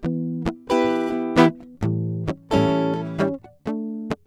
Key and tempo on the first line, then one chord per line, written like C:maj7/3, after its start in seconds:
B minor, 131 BPM
0.00 E:min
1.83 A:7
3.66 D:maj/5